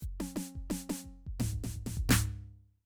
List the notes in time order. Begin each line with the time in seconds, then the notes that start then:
0.00 kick, hi-hat pedal
0.20 snare, high tom
0.36 snare, high tom
0.55 kick
0.70 snare, closed hi-hat, high tom
0.89 snare, high tom
1.04 kick
1.26 kick
1.40 snare, floor tom
1.53 kick
1.64 snare, floor tom
1.76 kick
1.86 snare, floor tom
1.97 kick
2.09 snare, floor tom